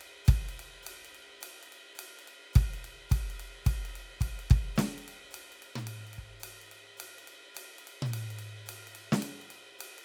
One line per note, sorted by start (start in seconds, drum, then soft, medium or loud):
0.01 ride medium
0.25 kick loud
0.25 hi-hat pedal medium
0.25 ride loud
0.49 ride medium
0.60 ride medium
0.83 hi-hat pedal medium
0.87 ride loud
1.05 ride medium
1.15 ride medium
1.41 hi-hat pedal medium
1.41 ride loud
1.63 ride medium
1.73 ride medium
1.95 hi-hat pedal medium
1.99 ride loud
2.19 ride medium
2.28 ride medium
2.53 kick loud
2.53 hi-hat pedal medium
2.53 ride loud
2.74 ride medium
2.85 ride medium
3.10 kick loud
3.10 hi-hat pedal medium
3.10 ride loud
3.30 ride medium
3.40 ride medium
3.65 kick medium
3.65 hi-hat pedal medium
3.65 ride loud
3.85 ride medium
3.96 ride medium
4.20 kick medium
4.20 hi-hat pedal medium
4.20 ride loud
4.39 ride medium
4.50 kick loud
4.50 ride medium
4.76 snare loud
4.76 hi-hat pedal medium
4.76 ride loud
4.98 ride medium
5.08 ride medium
5.31 hi-hat pedal medium
5.31 ride loud
5.52 ride medium
5.76 hi-hat pedal medium
5.76 high tom medium
5.87 ride loud
6.07 ride soft
6.13 ride medium
6.18 kick soft
6.40 hi-hat pedal medium
6.40 ride loud
6.62 ride medium
6.72 ride medium
6.97 hi-hat pedal medium
6.97 ride loud
7.19 ride medium
7.28 ride medium
7.55 hi-hat pedal medium
7.55 ride loud
7.79 ride medium
7.87 ride medium
8.02 hi-hat pedal medium
8.02 high tom loud
8.14 ride loud
8.31 ride medium
8.39 ride medium
8.66 hi-hat pedal medium
8.66 ride loud
8.87 ride medium
8.95 ride medium
9.12 snare loud
9.12 hi-hat pedal medium
9.23 ride loud
9.42 ride soft
9.51 ride medium
9.79 hi-hat pedal medium
9.79 ride loud
9.98 ride medium